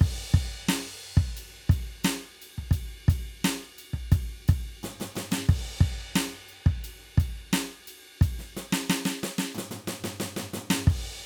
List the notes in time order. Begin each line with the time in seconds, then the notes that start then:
0.01 kick, crash, ride
0.35 kick, snare
0.69 snare, crash
1.18 kick, snare
1.37 ride
1.70 kick, ride
2.05 snare, ride
2.42 ride
2.59 kick
2.72 kick, ride
3.09 kick, ride
3.45 snare, ride
3.79 ride
3.94 kick
4.12 kick, ride
4.49 kick, ride
4.84 snare, floor tom
5.01 snare, floor tom
5.16 snare, floor tom
5.24 hi-hat pedal
5.32 snare, floor tom
5.49 kick, crash, ride
5.81 kick, snare
6.16 snare, ride
6.49 ride
6.67 kick
6.85 ride
7.18 kick, ride
7.54 snare, ride
7.88 ride
8.22 kick, ride
8.40 snare
8.57 snare
8.73 snare
8.90 snare
9.06 snare
9.24 snare
9.39 snare
9.55 snare, floor tom
9.72 snare, floor tom
9.88 snare, floor tom
10.05 snare, floor tom
10.21 snare, floor tom, hi-hat pedal
10.37 snare, floor tom
10.54 snare, floor tom
10.71 snare, floor tom
10.88 kick, crash, ride